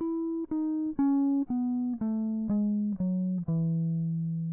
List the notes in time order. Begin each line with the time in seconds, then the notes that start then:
0.02 E4
0.52 D#4
1.00 C#4
1.51 B3
2.03 A3
2.48 G#3
3.02 F#3
3.50 E3